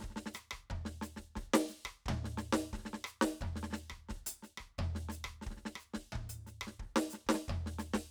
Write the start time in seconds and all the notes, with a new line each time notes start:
0.01 kick, snare
0.10 snare
0.16 snare
0.26 snare
0.34 cross-stick, hi-hat pedal
0.51 kick, cross-stick
0.70 kick, floor tom
0.85 snare
1.02 snare, hi-hat pedal
1.16 kick, snare
1.36 kick, snare
1.54 snare
1.68 snare, hi-hat pedal
1.85 kick, cross-stick
2.06 kick, floor tom
2.25 snare
2.38 snare, hi-hat pedal
2.53 kick, snare
2.73 kick, snare
2.78 snare
2.83 snare
2.85 snare
2.93 snare
3.04 cross-stick, hi-hat pedal
3.21 kick, snare
3.41 kick, floor tom
3.56 snare
3.63 snare
3.70 snare
3.73 snare, hi-hat pedal
3.90 kick, cross-stick
4.09 kick, snare
4.26 closed hi-hat
4.43 snare, hi-hat pedal
4.58 kick, cross-stick
4.78 kick, floor tom
4.95 snare
5.09 snare, hi-hat pedal
5.24 kick, cross-stick
5.42 snare
5.47 kick, snare
5.57 snare
5.65 snare
5.76 cross-stick
5.80 hi-hat pedal
5.94 kick, snare
6.12 kick, floor tom
6.29 closed hi-hat
6.47 snare, hi-hat pedal
6.61 kick, cross-stick
6.67 snare
6.80 kick, snare
6.96 snare
7.10 snare, hi-hat pedal
7.27 kick, snare
7.34 snare
7.48 kick, floor tom
7.66 snare
7.79 snare, hi-hat pedal
7.93 kick, snare